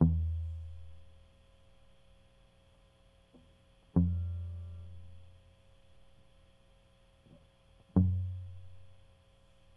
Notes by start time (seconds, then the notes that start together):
0.04 E2